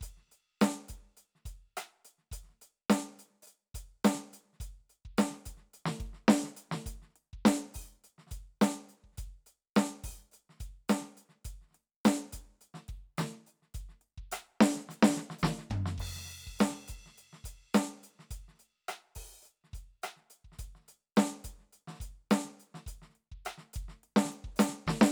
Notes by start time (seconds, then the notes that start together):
0.01 closed hi-hat, kick
0.17 snare
0.28 closed hi-hat, snare
0.61 closed hi-hat, snare
0.88 closed hi-hat, kick
1.17 closed hi-hat
1.35 snare
1.39 snare
1.45 closed hi-hat, kick, snare
1.77 closed hi-hat, cross-stick
2.05 closed hi-hat
2.18 snare
2.32 closed hi-hat, kick
2.43 snare
2.49 snare
2.61 closed hi-hat
2.90 closed hi-hat, snare
3.19 closed hi-hat
3.42 hi-hat pedal
3.47 closed hi-hat
3.74 closed hi-hat, kick
4.04 closed hi-hat, snare
4.15 snare
4.33 closed hi-hat
4.53 snare
4.60 closed hi-hat, kick
4.80 kick
4.90 closed hi-hat
5.05 kick
5.18 closed hi-hat, snare
5.30 snare
5.45 open hi-hat, kick
5.57 snare
5.73 closed hi-hat
5.86 snare
6.00 kick, closed hi-hat
6.06 kick
6.13 snare
6.28 snare
6.44 snare
6.57 closed hi-hat
6.71 snare
6.86 closed hi-hat, kick
7.02 snare
7.09 snare
7.16 closed hi-hat
7.33 kick
7.45 open hi-hat, snare
7.74 open hi-hat, kick
7.83 snare
8.04 closed hi-hat
8.18 snare
8.27 snare
8.31 closed hi-hat, kick
8.37 kick
8.61 open hi-hat, snare
8.89 closed hi-hat
9.04 kick
9.12 snare
9.18 closed hi-hat, kick
9.27 kick
9.46 closed hi-hat
9.76 closed hi-hat, snare
10.04 open hi-hat, kick
10.09 kick
10.17 snare
10.31 closed hi-hat, hi-hat pedal
10.49 snare
10.54 snare
10.58 closed hi-hat, kick, snare
10.66 kick
10.88 closed hi-hat, snare, hi-hat pedal
11.01 snare
11.17 closed hi-hat
11.29 snare
11.45 closed hi-hat, kick
11.61 snare
11.67 snare
11.71 snare, closed hi-hat
12.05 closed hi-hat, snare
12.33 closed hi-hat, kick
12.61 closed hi-hat
12.74 snare
12.88 kick, closed hi-hat
13.18 closed hi-hat, snare
13.31 snare
13.46 open hi-hat, hi-hat pedal
13.62 snare
13.74 closed hi-hat, kick
13.81 kick
13.89 snare
14.01 closed hi-hat
14.18 kick
14.32 closed hi-hat, cross-stick
14.61 snare
14.76 snare
14.89 snare, hi-hat pedal
15.03 snare
15.09 snare
15.17 snare
15.30 snare
15.39 hi-hat pedal
15.43 kick, snare
15.58 snare
15.70 kick, mid tom
15.86 snare
15.98 kick, crash
16.07 kick
16.16 snare
16.25 snare
16.30 closed hi-hat
16.47 kick
16.59 open hi-hat, snare
16.70 snare
16.88 closed hi-hat, kick
17.06 snare
17.18 closed hi-hat
17.33 snare
17.43 closed hi-hat, kick, snare
17.74 closed hi-hat, snare
18.03 closed hi-hat
18.19 snare
18.31 closed hi-hat, kick
18.36 kick
18.48 snare
18.54 snare
18.59 closed hi-hat
18.88 closed hi-hat, cross-stick
19.15 open hi-hat, kick
19.42 closed hi-hat, hi-hat pedal
19.64 snare
19.70 kick, snare
19.75 closed hi-hat
20.02 closed hi-hat, cross-stick, hi-hat pedal
20.16 snare
20.30 closed hi-hat
20.44 kick
20.52 snare
20.57 closed hi-hat, kick, snare
20.64 kick
20.75 snare
20.79 snare
20.85 snare
20.87 closed hi-hat, snare
21.16 closed hi-hat, snare
21.30 snare
21.44 closed hi-hat, kick
21.59 snare
21.73 closed hi-hat
21.88 snare
21.93 snare
22.00 closed hi-hat, kick
22.06 kick
22.31 closed hi-hat, snare
22.45 snare
22.60 closed hi-hat
22.74 snare
22.86 closed hi-hat, kick
23.02 snare
23.10 snare
23.15 closed hi-hat
23.32 kick
23.45 open hi-hat, cross-stick
23.58 snare
23.73 closed hi-hat, kick
23.82 kick
23.88 snare
24.03 closed hi-hat
24.16 snare
24.25 snare
24.32 closed hi-hat
24.44 kick
24.56 closed hi-hat, snare, hi-hat pedal
24.69 snare
24.87 kick, snare
25.01 snare
25.06 hi-hat pedal